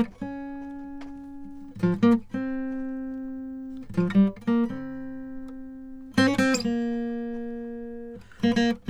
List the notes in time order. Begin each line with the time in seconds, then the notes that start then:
0.23 C#4
1.84 F3
2.04 A#3
2.35 C4
3.99 F3
4.16 G3
4.48 A#3
4.66 D3
4.71 C4
6.18 C4
6.28 C#4
6.39 C4
6.54 B3
8.45 A#3
8.57 A#3